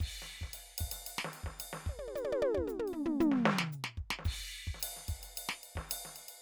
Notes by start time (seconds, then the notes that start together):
0.01 kick, hi-hat pedal, crash
0.07 kick
0.23 snare
0.42 kick, snare
0.47 kick
0.54 hi-hat pedal, ride bell
0.79 kick, ride
0.87 kick
0.92 snare, ride
1.07 hi-hat pedal, ride bell
1.19 snare
1.25 snare
1.34 ride
1.44 kick, snare
1.49 kick
1.60 hi-hat pedal, ride bell
1.74 snare
1.87 kick, high tom
1.93 kick
1.99 high tom
2.08 high tom
2.16 hi-hat pedal, high tom
2.25 high tom
2.33 high tom
2.42 high tom
2.55 kick, high tom
2.68 hi-hat pedal, mid tom
2.80 mid tom
2.88 ride
2.93 floor tom
3.06 floor tom
3.20 hi-hat pedal, floor tom
3.32 snare
3.45 snare, hi-hat pedal
3.59 snare
3.73 hi-hat pedal
3.85 snare
3.98 kick
4.11 snare
4.20 snare
4.25 kick, hi-hat pedal, crash
4.34 snare
4.39 kick
4.68 kick
4.75 snare
4.80 hi-hat pedal, ride bell
4.97 snare
5.09 kick, ride
5.15 kick
5.21 snare, ride
5.25 snare
5.36 hi-hat pedal, ride bell
5.50 snare
5.64 ride
5.76 kick, snare
5.90 hi-hat pedal, ride bell
6.06 snare
6.12 snare
6.17 ride
6.29 ride